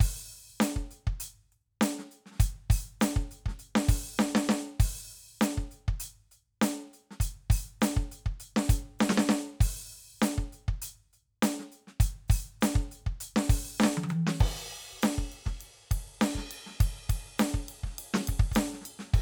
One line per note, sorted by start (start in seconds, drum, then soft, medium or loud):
0.01 open hi-hat loud
0.01 kick loud
0.50 kick soft
0.61 open hi-hat loud
0.61 snare loud
0.61 hi-hat pedal medium
0.77 kick medium
0.91 closed hi-hat soft
1.07 kick medium
1.21 closed hi-hat loud
1.53 closed hi-hat soft
1.82 closed hi-hat loud
1.82 snare loud
1.99 snare soft
2.12 closed hi-hat soft
2.27 snare soft
2.32 snare soft
2.35 snare soft
2.39 closed hi-hat loud
2.39 kick loud
2.39 snare soft
2.71 open hi-hat loud
2.71 kick loud
3.01 closed hi-hat loud
3.01 snare loud
3.01 hi-hat pedal soft
3.17 kick loud
3.32 closed hi-hat medium
3.46 kick medium
3.46 snare soft
3.60 closed hi-hat medium
3.76 snare loud
3.89 open hi-hat loud
3.89 kick loud
4.19 snare loud
4.19 hi-hat pedal medium
4.36 snare loud
4.50 snare loud
4.80 open hi-hat loud
4.80 kick loud
5.42 open hi-hat loud
5.42 snare loud
5.42 hi-hat pedal soft
5.58 kick medium
5.72 closed hi-hat soft
5.89 kick loud
6.00 closed hi-hat loud
6.32 closed hi-hat soft
6.62 closed hi-hat loud
6.62 snare loud
6.94 closed hi-hat soft
7.11 snare soft
7.21 closed hi-hat loud
7.21 kick loud
7.51 open hi-hat loud
7.51 kick loud
7.82 closed hi-hat loud
7.82 snare loud
7.82 hi-hat pedal medium
7.97 kick loud
8.12 closed hi-hat medium
8.27 kick medium
8.40 closed hi-hat medium
8.57 snare loud
8.70 open hi-hat loud
8.70 kick loud
9.00 snare loud
9.00 hi-hat pedal medium
9.10 snare loud
9.18 snare loud
9.30 snare loud
9.61 open hi-hat loud
9.61 kick loud
10.14 kick soft
10.22 open hi-hat loud
10.22 snare loud
10.22 hi-hat pedal medium
10.38 kick medium
10.53 closed hi-hat soft
10.69 kick medium
10.82 closed hi-hat loud
11.14 closed hi-hat soft
11.43 closed hi-hat loud
11.43 snare loud
11.60 snare soft
11.72 closed hi-hat soft
11.88 snare soft
12.01 closed hi-hat loud
12.01 kick loud
12.29 open hi-hat loud
12.29 kick loud
12.29 hi-hat pedal soft
12.62 closed hi-hat loud
12.62 snare loud
12.62 hi-hat pedal medium
12.76 kick loud
12.92 closed hi-hat medium
13.07 kick medium
13.21 closed hi-hat loud
13.37 snare loud
13.50 open hi-hat loud
13.50 kick loud
13.80 snare loud
13.80 hi-hat pedal soft
13.84 snare loud
13.98 high tom loud
14.04 high tom loud
14.09 hi-hat pedal soft
14.09 high tom loud
14.27 snare loud
14.39 kick loud
14.39 hi-hat pedal soft
14.39 crash loud
14.93 kick soft
15.02 snare loud
15.02 hi-hat pedal medium
15.02 ride loud
15.19 kick medium
15.30 hi-hat pedal soft
15.30 ride medium
15.46 kick medium
15.46 snare soft
15.60 hi-hat pedal soft
15.60 ride medium
15.92 kick loud
15.92 ride loud
16.22 snare loud
16.22 hi-hat pedal medium
16.22 ride loud
16.36 kick medium
16.36 snare soft
16.52 ride loud
16.67 snare soft
16.71 snare soft
16.81 kick loud
16.81 hi-hat pedal medium
16.81 ride loud
17.10 kick loud
17.10 ride loud
17.39 snare loud
17.39 hi-hat pedal medium
17.39 ride loud
17.55 kick medium
17.68 hi-hat pedal soft
17.68 ride medium
17.84 kick medium
17.84 snare soft
17.91 snare soft
17.94 snare soft
17.99 hi-hat pedal medium
17.99 ride loud
18.14 snare loud
18.24 hi-hat pedal soft
18.28 kick medium
18.28 ride loud
18.40 kick loud
18.52 kick medium
18.52 hi-hat pedal medium
18.52 ride loud
18.57 snare loud
18.74 snare soft
18.82 snare soft
18.82 ride bell medium
19.00 snare medium
19.04 snare soft
19.07 snare soft
19.14 kick loud
19.14 hi-hat pedal soft
19.14 ride loud